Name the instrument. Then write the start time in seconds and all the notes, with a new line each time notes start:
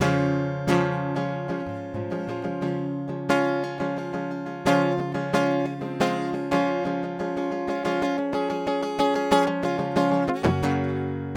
acoustic guitar
0.00 C#3 F3 G#3 C#4 F4
0.69 C#3 F3 G#3 C#4 F4
1.17 F3 G#3 C#4 F4
1.49 C#3 F3 G#3 C#4 F4
1.62 F3
1.67 G#2
1.95 G#2 A#2 F3 G#3
2.11 A2 F3 G#3 C#4 F4
2.29 A#2 F3 G#3 C#4 F4
2.44 C#3 F3 G#3 C#4 F4
2.63 C#3 F3 G#3 C#4 F4
3.09 F3 G#3 C#4
3.17 C#3
3.30 F3 G#3 C#4 F4
3.63 F3 G#3 C#4
3.79 C#3 F3 G#3 C#4 F4
3.98 F3 G#3 C#4 F4
4.13 F3 G#3 C#4 F4
4.25 G#3
4.32 C#4 F4
4.46 G#3 C#4 F4
4.67 C#3 F3 G#3 C#4 F4
4.98 F3 G#3 C#4 F4
5.13 F3 G#3 C#4 F4
5.34 C#3 F3 G#3 C#4 F4
5.65 F3 G#3 C#4 F4
5.80 F3 G#3 C4 F4
6.01 F3 G#3 C4 F4
6.21 C#4
6.33 F3 G#3 C#4 F4
6.52 C#3 F3 G#3 C#4 F4
6.85 C#3 F3 G#3 C#4 F4
7.04 F3 G#3 C#4
7.20 C#3 F3 G#3 C#4 F4
7.37 F3 G#3 C#4 F4
7.52 F3 G#3 C#4 F4
7.68 F3 G#3 C#4 F4
7.86 F3 G#3 C#4 F4
8.03 F3 G#3 C#4 F4
8.16 F3 G#3 C#4 G#4
8.34 F3 G#3 C#4 G#4
8.50 F3 G#3 C#4 G#4
8.68 G#3 C#4 G#4
8.82 G#3 C#4 G#4
8.99 F3 G#3 C#4 G#4
9.15 F3 G#3 C#4 G#4
9.32 F3 G#3 C#4 G#4
9.48 F3 G#3 C#4 F4
9.64 C#3 F3 G#3 C#4 F4
9.78 C#3 F3 G#3 C#4 F4
9.96 C#3 F3 G#3 C#4 F4
10.11 F3 G#3 C#4 F4
10.29 G#3 C4 F#4
10.45 F#2 C#3 E3 A3 C#4 F#4
10.63 F#2 C#3 F#3 A#3